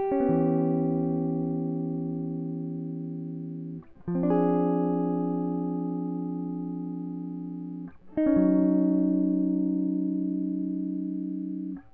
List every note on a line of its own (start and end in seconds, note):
0.00 3.71 G4
0.12 3.79 C#4
0.21 3.17 B3
0.30 3.84 E3
4.09 7.91 F3
4.16 7.61 C4
4.24 7.89 D4
4.31 7.59 G#4
8.18 11.76 D#4
8.27 11.82 C#4
8.38 11.79 F#3